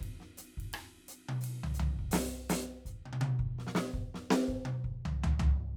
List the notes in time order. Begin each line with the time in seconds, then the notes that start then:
0.01 kick, ride
0.21 snare
0.38 snare, hi-hat pedal, ride
0.58 kick, ride
0.74 cross-stick, ride
0.96 snare
1.08 hi-hat pedal, ride
1.29 high tom
1.41 hi-hat pedal, ride
1.64 floor tom
1.75 hi-hat pedal
1.80 floor tom
1.99 kick
2.12 open hi-hat, snare
2.50 open hi-hat, snare
2.86 kick, hi-hat pedal
3.06 high tom
3.13 high tom
3.21 high tom
3.39 kick
3.59 snare
3.67 snare
3.75 snare
3.94 kick
4.15 snare
4.31 snare
4.49 kick
4.65 closed hi-hat, high tom
4.85 kick
5.06 floor tom
5.24 floor tom
5.40 floor tom